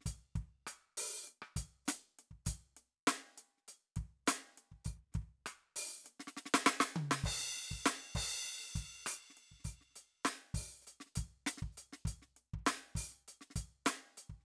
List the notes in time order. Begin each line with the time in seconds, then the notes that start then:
0.01 snare, hi-hat pedal
0.06 closed hi-hat, kick
0.14 kick
0.35 kick, closed hi-hat
0.42 kick
0.67 closed hi-hat, cross-stick
0.97 open hi-hat
1.23 hi-hat pedal
1.27 closed hi-hat
1.42 cross-stick
1.56 closed hi-hat, kick
1.62 kick
1.85 closed hi-hat, snare, hi-hat pedal
2.19 closed hi-hat
2.31 kick
2.45 closed hi-hat, kick, hi-hat pedal
2.77 closed hi-hat
3.07 closed hi-hat, snare
3.38 closed hi-hat
3.57 snare
3.68 closed hi-hat
3.96 kick, closed hi-hat
4.26 closed hi-hat, snare, hi-hat pedal
4.57 closed hi-hat
4.71 kick
4.84 open hi-hat, kick, hi-hat pedal
4.96 kick
5.12 kick, snare, closed hi-hat
5.21 kick
5.46 closed hi-hat, cross-stick
5.76 open hi-hat
5.88 snare
6.04 closed hi-hat, hi-hat pedal
6.20 snare
6.27 snare
6.37 snare
6.46 snare
6.54 snare
6.66 snare, hi-hat pedal
6.80 snare
6.95 hi-hat pedal, high tom
7.11 snare
7.24 kick, crash
7.33 kick
7.39 snare
7.55 closed hi-hat, snare
7.71 kick
7.86 open hi-hat, snare, hi-hat pedal
8.12 kick, snare, crash
8.44 hi-hat pedal
8.59 snare
8.63 snare
8.65 snare
8.71 snare
8.75 closed hi-hat, kick
8.81 kick
9.06 open hi-hat, cross-stick
9.30 snare
9.37 closed hi-hat
9.51 kick
9.60 snare
9.64 open hi-hat, kick
9.81 snare
9.90 snare
9.92 closed hi-hat, snare
10.24 closed hi-hat, snare, hi-hat pedal
10.54 open hi-hat, kick
10.60 kick
10.81 hi-hat pedal
10.87 closed hi-hat
11.00 snare
11.06 snare
11.15 closed hi-hat, kick
11.23 kick
11.46 closed hi-hat, snare
11.57 snare
11.62 kick
11.72 hi-hat pedal
11.77 closed hi-hat
11.93 snare
12.05 closed hi-hat, kick
12.11 kick
12.22 snare
12.36 closed hi-hat
12.53 kick
12.59 kick
12.66 closed hi-hat, snare, hi-hat pedal
12.95 open hi-hat, kick
13.11 snare
13.28 closed hi-hat
13.41 snare
13.50 snare
13.56 closed hi-hat, kick
13.85 closed hi-hat, snare, hi-hat pedal
14.17 closed hi-hat
14.29 kick
14.40 snare